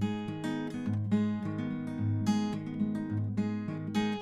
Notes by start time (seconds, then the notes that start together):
0.02 G#3 D#4 G#4
0.30 D#3
0.44 B3 D#4
0.75 B3
0.87 G#2
1.12 G#3 D#4 G#4
1.46 D#3
1.59 B3
1.72 G#3
1.88 D#4
1.99 G#2
2.27 G#3 G#4
2.55 D#3
2.67 B3
2.81 G#3
2.96 D#4
3.11 G#2
3.38 G#3 D#4 G#4
3.70 D#3
3.95 G#3 D#4 G#4